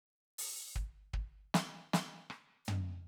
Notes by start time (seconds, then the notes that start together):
0.38 open hi-hat
0.73 kick, hi-hat pedal
1.13 kick, ride
1.54 snare
1.93 snare
2.30 cross-stick
2.65 hi-hat pedal, high tom